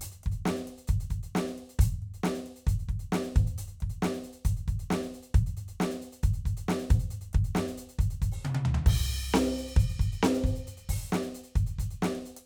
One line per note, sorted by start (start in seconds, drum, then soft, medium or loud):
0.01 closed hi-hat loud
0.12 closed hi-hat soft
0.23 kick medium
0.23 closed hi-hat soft
0.32 closed hi-hat soft
0.46 snare loud
0.56 closed hi-hat soft
0.67 closed hi-hat medium
0.78 closed hi-hat soft
0.87 closed hi-hat medium
0.87 kick loud
1.00 closed hi-hat medium
1.10 kick medium
1.23 closed hi-hat soft
1.35 snare loud
1.47 closed hi-hat soft
1.58 closed hi-hat soft
1.69 closed hi-hat soft
1.79 closed hi-hat loud
1.79 kick loud
1.92 closed hi-hat soft
2.02 closed hi-hat soft
2.14 closed hi-hat soft
2.24 snare loud
2.35 closed hi-hat soft
2.46 closed hi-hat soft
2.56 closed hi-hat soft
2.67 closed hi-hat medium
2.67 kick loud
2.79 closed hi-hat soft
2.89 kick medium
2.89 closed hi-hat soft
2.99 closed hi-hat soft
3.12 snare loud
3.24 closed hi-hat medium
3.36 closed hi-hat soft
3.36 kick loud
3.47 closed hi-hat soft
3.58 closed hi-hat loud
3.68 closed hi-hat soft
3.80 kick medium
3.80 closed hi-hat soft
3.90 closed hi-hat soft
4.02 snare loud
4.14 closed hi-hat soft
4.24 closed hi-hat medium
4.33 closed hi-hat medium
4.45 closed hi-hat loud
4.45 kick loud
4.57 closed hi-hat soft
4.68 closed hi-hat soft
4.68 kick medium
4.79 closed hi-hat soft
4.91 snare loud
5.03 closed hi-hat soft
5.14 closed hi-hat medium
5.23 closed hi-hat soft
5.34 closed hi-hat medium
5.34 kick loud
5.46 closed hi-hat soft
5.57 closed hi-hat medium
5.68 closed hi-hat soft
5.80 snare loud
5.91 closed hi-hat medium
6.02 closed hi-hat medium
6.12 closed hi-hat medium
6.23 closed hi-hat medium
6.23 kick loud
6.34 closed hi-hat medium
6.45 closed hi-hat medium
6.45 kick medium
6.57 closed hi-hat medium
6.69 snare loud
6.79 closed hi-hat medium
6.90 closed hi-hat medium
6.90 kick loud
7.00 closed hi-hat medium
7.10 closed hi-hat medium
7.21 closed hi-hat soft
7.33 kick loud
7.33 closed hi-hat soft
7.44 closed hi-hat medium
7.55 snare loud
7.68 closed hi-hat medium
7.78 closed hi-hat medium
7.89 closed hi-hat medium
7.99 closed hi-hat medium
7.99 kick loud
8.10 closed hi-hat medium
8.22 closed hi-hat medium
8.22 kick medium
8.32 open hi-hat medium
8.44 hi-hat pedal soft
8.44 high tom loud
8.55 high tom loud
8.65 floor tom loud
8.75 floor tom loud
8.86 kick loud
8.86 crash loud
9.10 closed hi-hat soft
9.24 closed hi-hat soft
9.34 snare loud
9.47 closed hi-hat soft
9.58 closed hi-hat medium
9.68 closed hi-hat medium
9.76 closed hi-hat medium
9.76 kick loud
9.89 closed hi-hat medium
9.99 closed hi-hat medium
9.99 kick loud
10.12 closed hi-hat medium
10.23 snare loud
10.34 closed hi-hat medium
10.44 closed hi-hat medium
10.44 kick loud
10.55 closed hi-hat soft
10.67 closed hi-hat medium
10.77 closed hi-hat medium
10.89 open hi-hat loud
10.89 kick medium
11.01 open hi-hat soft
11.09 snare loud
11.09 hi-hat pedal soft
11.23 closed hi-hat medium
11.35 closed hi-hat medium
11.44 closed hi-hat medium
11.56 closed hi-hat medium
11.56 kick loud
11.67 closed hi-hat medium
11.79 closed hi-hat medium
11.79 kick medium
11.91 closed hi-hat soft
12.02 snare loud
12.15 closed hi-hat soft
12.26 closed hi-hat medium
12.37 closed hi-hat medium